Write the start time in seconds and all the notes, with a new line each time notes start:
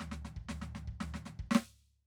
0.00 snare, floor tom
0.12 snare, floor tom
0.25 snare, floor tom
0.37 kick
0.49 snare, floor tom
0.62 snare, floor tom
0.75 snare, floor tom
0.88 kick
1.01 snare, floor tom
1.14 snare, floor tom
1.26 snare, floor tom
1.39 kick
1.51 snare
1.55 snare